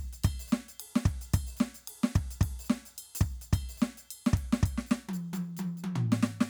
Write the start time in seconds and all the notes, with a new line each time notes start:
0.13 percussion
0.24 kick, ride bell
0.39 percussion
0.48 percussion
0.52 snare
0.68 percussion
0.80 ride
0.96 snare
1.05 kick, ride
1.21 percussion
1.34 kick, ride bell
1.47 percussion
1.57 snare, percussion
1.74 percussion
1.87 ride
2.03 snare
2.15 kick, ride
2.31 percussion
2.41 kick, ride
2.59 percussion
2.65 percussion
2.70 snare
2.85 percussion
2.98 ride bell
3.15 percussion
3.21 kick
3.41 percussion
3.53 kick, ride bell
3.69 percussion
3.77 percussion
3.82 snare
3.97 percussion
4.11 ride bell
4.26 snare
4.33 kick, ride
4.53 snare
4.63 kick, ride bell
4.78 snare
4.87 percussion
4.91 snare
5.09 high tom
5.13 percussion
5.33 high tom, percussion
5.57 high tom, percussion
5.77 percussion
5.84 high tom
5.96 floor tom
6.12 snare
6.23 snare, percussion
6.41 snare